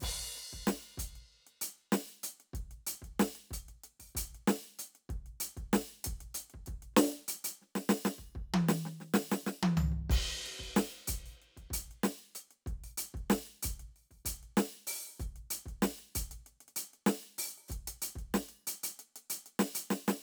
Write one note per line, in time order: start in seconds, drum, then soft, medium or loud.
0.01 kick medium
0.01 hi-hat pedal medium
0.01 crash loud
0.38 closed hi-hat soft
0.53 kick soft
0.53 closed hi-hat soft
0.68 snare loud
0.84 closed hi-hat soft
0.98 closed hi-hat loud
0.98 kick medium
1.16 closed hi-hat soft
1.47 closed hi-hat soft
1.62 closed hi-hat loud
1.79 closed hi-hat soft
1.93 snare loud
2.09 open hi-hat soft
2.24 closed hi-hat loud
2.41 closed hi-hat soft
2.54 kick medium
2.54 closed hi-hat medium
2.72 closed hi-hat soft
2.87 closed hi-hat loud
3.03 kick soft
3.03 closed hi-hat soft
3.20 snare loud
3.36 closed hi-hat soft
3.51 closed hi-hat medium
3.51 kick soft
3.69 closed hi-hat soft
3.84 closed hi-hat medium
4.00 kick soft
4.00 open hi-hat medium
4.16 closed hi-hat loud
4.16 kick medium
4.35 closed hi-hat soft
4.48 snare loud
4.64 open hi-hat soft
4.79 closed hi-hat medium
4.96 closed hi-hat soft
5.10 kick medium
5.10 closed hi-hat soft
5.27 closed hi-hat soft
5.41 closed hi-hat loud
5.57 kick soft
5.57 closed hi-hat soft
5.74 snare loud
5.88 closed hi-hat soft
6.05 kick medium
6.05 closed hi-hat loud
6.21 closed hi-hat soft
6.35 closed hi-hat loud
6.50 closed hi-hat soft
6.54 kick soft
6.67 kick soft
6.67 closed hi-hat medium
6.83 closed hi-hat soft
6.94 kick soft
6.94 snare loud
7.12 closed hi-hat soft
7.29 closed hi-hat loud
7.45 closed hi-hat loud
7.62 snare soft
7.76 snare medium
7.90 snare loud
8.06 snare loud
8.19 kick soft
8.36 kick medium
8.54 high tom loud
8.69 snare loud
8.86 snare soft
9.01 snare soft
9.14 snare loud
9.32 snare loud
9.47 snare medium
9.63 high tom loud
9.78 floor tom loud
9.93 kick soft
10.10 kick loud
10.10 ride loud
10.47 closed hi-hat soft
10.60 kick soft
10.64 closed hi-hat soft
10.77 snare loud
10.93 closed hi-hat soft
11.08 closed hi-hat loud
11.08 kick medium
11.26 open hi-hat soft
11.42 closed hi-hat soft
11.57 kick soft
11.57 open hi-hat soft
11.71 closed hi-hat loud
11.71 kick medium
11.92 closed hi-hat soft
12.04 snare loud
12.19 open hi-hat soft
12.36 closed hi-hat medium
12.51 closed hi-hat soft
12.67 kick medium
12.67 closed hi-hat soft
12.84 open hi-hat medium
12.98 closed hi-hat loud
13.15 kick medium
13.15 closed hi-hat soft
13.31 snare loud
13.47 closed hi-hat soft
13.63 closed hi-hat loud
13.63 kick medium
13.80 closed hi-hat soft
13.97 open hi-hat soft
14.11 kick soft
14.11 open hi-hat soft
14.26 closed hi-hat loud
14.26 kick soft
14.43 closed hi-hat soft
14.58 snare loud
14.73 closed hi-hat soft
14.88 open hi-hat loud
15.08 open hi-hat soft
15.20 kick medium
15.20 hi-hat pedal soft
15.36 closed hi-hat soft
15.51 closed hi-hat loud
15.66 kick soft
15.66 closed hi-hat soft
15.83 snare loud
15.99 closed hi-hat soft
16.16 closed hi-hat loud
16.16 kick medium
16.32 closed hi-hat medium
16.47 closed hi-hat soft
16.61 closed hi-hat soft
16.69 closed hi-hat soft
16.77 closed hi-hat loud
16.94 closed hi-hat soft
17.07 snare loud
17.24 closed hi-hat soft
17.39 open hi-hat loud
17.58 open hi-hat soft
17.69 kick medium
17.69 closed hi-hat medium
17.69 hi-hat pedal medium
17.88 closed hi-hat loud
18.03 closed hi-hat loud
18.16 kick soft
18.16 closed hi-hat soft
18.35 snare loud
18.49 closed hi-hat soft
18.68 closed hi-hat loud
18.84 closed hi-hat loud
19.00 closed hi-hat medium
19.16 closed hi-hat medium
19.31 closed hi-hat loud
19.47 closed hi-hat medium
19.60 snare loud
19.76 closed hi-hat loud
19.91 snare loud
20.09 snare loud